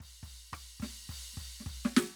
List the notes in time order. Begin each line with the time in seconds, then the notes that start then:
0.00 kick, crash
0.23 kick, crash
0.53 kick, cross-stick, crash
0.80 kick, snare, crash
1.09 kick, crash
1.34 kick, snare
1.40 crash
1.60 snare
1.66 kick, crash
1.85 snare
1.97 snare